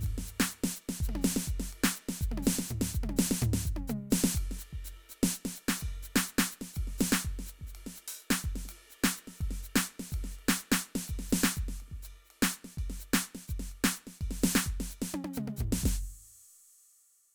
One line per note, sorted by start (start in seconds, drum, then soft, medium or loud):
0.01 kick soft
0.01 hi-hat pedal loud
0.06 kick soft
0.06 ride medium
0.13 kick soft
0.18 snare medium
0.26 hi-hat pedal loud
0.30 ride medium
0.40 snare loud
0.49 hi-hat pedal loud
0.53 ride medium
0.64 snare loud
0.74 hi-hat pedal loud
0.74 ride bell soft
0.89 snare medium
1.00 kick medium
1.00 hi-hat pedal loud
1.07 kick soft
1.07 mid tom medium
1.07 ride soft
1.11 kick soft
1.11 high tom medium
1.21 kick soft
1.21 snare loud
1.21 hi-hat pedal medium
1.36 snare medium
1.46 kick soft
1.46 hi-hat pedal medium
1.46 ride bell soft
1.54 kick soft
1.57 kick soft
1.57 snare medium
1.68 hi-hat pedal soft
1.73 ride medium
1.84 snare loud
1.94 hi-hat pedal loud
1.94 ride bell soft
2.09 snare medium
2.20 kick medium
2.20 hi-hat pedal loud
2.29 kick soft
2.29 mid tom medium
2.32 kick soft
2.38 high tom medium
2.43 hi-hat pedal loud
2.47 snare loud
2.59 snare medium
2.67 hi-hat pedal loud
2.67 floor tom medium
2.81 snare medium
2.93 kick medium
2.93 hi-hat pedal loud
3.01 kick soft
3.01 mid tom medium
3.05 kick soft
3.09 high tom medium
3.16 snare loud
3.16 hi-hat pedal loud
3.31 snare loud
3.41 floor tom loud
3.41 hi-hat pedal loud
3.53 snare medium
3.65 kick medium
3.65 hi-hat pedal loud
3.72 kick soft
3.75 kick soft
3.75 high tom medium
3.88 hi-hat pedal loud
3.88 mid tom loud
4.11 snare loud
4.11 hi-hat pedal loud
4.24 snare loud
4.34 kick medium
4.34 hi-hat pedal loud
4.34 ride loud
4.42 kick soft
4.51 snare soft
4.58 hi-hat pedal loud
4.58 ride medium
4.73 kick soft
4.84 hi-hat pedal loud
4.84 ride medium
5.09 hi-hat pedal loud
5.09 ride medium
5.23 snare loud
5.33 hi-hat pedal loud
5.33 ride medium
5.45 snare medium
5.54 hi-hat pedal loud
5.54 ride medium
5.68 snare loud
5.77 hi-hat pedal loud
5.81 kick soft
5.81 ride bell medium
5.88 kick soft
5.91 kick soft
6.03 hi-hat pedal loud
6.03 ride medium
6.16 snare loud
6.26 hi-hat pedal loud
6.26 ride soft
6.38 snare loud
6.50 hi-hat pedal loud
6.50 ride medium
6.61 snare medium
6.73 kick soft
6.73 hi-hat pedal loud
6.73 ride loud
6.83 kick soft
6.87 kick soft
6.87 snare soft
6.98 snare loud
6.98 hi-hat pedal loud
7.12 snare loud
7.20 hi-hat pedal medium
7.25 kick soft
7.25 ride medium
7.31 kick soft
7.34 kick soft
7.39 snare soft
7.46 hi-hat pedal loud
7.46 ride medium
7.59 kick soft
7.59 snare soft
7.63 snare soft
7.66 snare soft
7.66 hi-hat pedal medium
7.75 ride loud
7.86 snare soft
7.95 hi-hat pedal medium
7.95 ride medium
8.08 open hi-hat loud
8.16 hi-hat pedal soft
8.22 ride medium
8.30 snare loud
8.41 kick soft
8.41 hi-hat pedal medium
8.45 ride bell soft
8.50 kick soft
8.56 snare soft
8.65 snare soft
8.65 hi-hat pedal medium
8.65 ride loud
8.90 hi-hat pedal medium
8.90 ride soft
9.04 snare loud
9.15 hi-hat pedal medium
9.15 ride soft
9.27 snare soft
9.36 hi-hat pedal soft
9.41 kick medium
9.41 ride medium
9.47 kick soft
9.47 snare soft
9.63 hi-hat pedal medium
9.63 ride medium
9.76 snare loud
9.84 hi-hat pedal medium
9.88 ride bell soft
10.00 snare medium
10.10 kick soft
10.10 hi-hat pedal medium
10.14 ride loud
10.18 kick soft
10.21 kick soft
10.21 snare soft
10.31 hi-hat pedal soft
10.39 ride medium
10.48 snare loud
10.58 hi-hat pedal loud
10.58 ride medium
10.72 snare loud
10.79 hi-hat pedal medium
10.84 ride medium
10.95 snare medium
11.06 kick soft
11.06 hi-hat pedal medium
11.06 ride bell medium
11.15 kick soft
11.18 kick soft
11.18 snare soft
11.28 hi-hat pedal medium
11.33 snare loud
11.44 snare loud
11.54 kick soft
11.54 hi-hat pedal medium
11.54 ride bell soft
11.63 kick soft
11.67 kick soft
11.67 snare soft
11.75 hi-hat pedal soft
11.80 snare soft
11.80 ride medium
11.88 kick soft
11.88 snare soft
11.93 snare soft
11.96 snare soft
12.00 snare soft
12.00 hi-hat pedal medium
12.05 ride bell soft
12.25 hi-hat pedal soft
12.30 ride medium
12.42 snare loud
12.51 hi-hat pedal medium
12.51 ride medium
12.64 snare soft
12.71 hi-hat pedal soft
12.78 kick soft
12.78 ride bell soft
12.84 kick soft
12.90 snare soft
12.99 hi-hat pedal loud
12.99 ride soft
13.13 snare loud
13.21 hi-hat pedal soft
13.26 ride medium
13.35 snare soft
13.48 kick soft
13.48 hi-hat pedal medium
13.48 ride bell soft
13.58 kick soft
13.58 snare soft
13.68 hi-hat pedal soft
13.68 ride medium
13.84 snare loud
13.94 hi-hat pedal medium
13.94 ride medium
14.07 snare soft
14.14 hi-hat pedal soft
14.21 kick soft
14.21 ride bell soft
14.27 kick soft
14.30 kick soft
14.30 snare medium
14.42 snare loud
14.42 hi-hat pedal loud
14.55 snare loud
14.63 kick soft
14.63 hi-hat pedal soft
14.68 ride bell soft
14.73 kick soft
14.80 snare medium
14.89 hi-hat pedal medium
14.89 ride bell soft
15.02 snare medium
15.09 hi-hat pedal medium
15.14 high tom loud
15.24 high tom medium
15.34 hi-hat pedal loud
15.34 mid tom loud
15.56 kick soft
15.56 hi-hat pedal loud
15.56 floor tom medium
15.64 kick soft
15.67 kick soft
15.72 snare loud
15.84 kick medium
15.84 snare medium
15.84 hi-hat pedal loud
15.84 crash loud
15.90 kick soft
15.96 kick soft